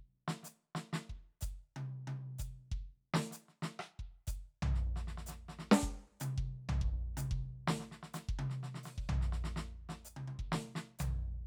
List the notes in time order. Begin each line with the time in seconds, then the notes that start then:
0.29 snare
0.44 snare, hi-hat pedal
0.76 snare
0.94 snare
1.10 kick
1.42 kick, hi-hat pedal
1.77 closed hi-hat, high tom
2.08 closed hi-hat, high tom
2.39 kick, hi-hat pedal
2.72 kick
3.15 snare
3.32 snare, hi-hat pedal
3.49 snare
3.63 snare
3.80 cross-stick
4.00 kick
4.28 kick, hi-hat pedal
4.63 floor tom
4.75 snare
4.97 snare
5.08 snare
5.18 snare
5.27 snare, hi-hat pedal
5.49 snare
5.60 snare
5.72 snare
5.84 kick
6.21 hi-hat pedal, high tom
6.38 kick
6.70 floor tom
6.82 kick
7.18 hi-hat pedal, high tom
7.32 kick
7.68 snare
7.80 snare
7.92 snare
8.04 snare
8.14 snare, hi-hat pedal
8.29 kick
8.40 high tom
8.51 snare
8.64 snare
8.75 snare
8.84 snare, hi-hat pedal
8.99 kick
9.10 floor tom
9.22 snare
9.33 snare
9.45 snare
9.57 snare
9.90 snare
10.06 hi-hat pedal
10.17 high tom
10.28 high tom
10.40 kick
10.53 snare
10.76 snare
11.00 floor tom, hi-hat pedal